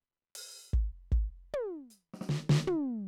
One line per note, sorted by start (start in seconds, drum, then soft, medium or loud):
0.35 open hi-hat loud
0.69 hi-hat pedal soft
0.73 kick medium
1.12 kick medium
1.53 high tom loud
1.90 hi-hat pedal medium
2.14 snare soft
2.21 snare soft
2.29 snare medium
2.49 snare loud
2.67 floor tom loud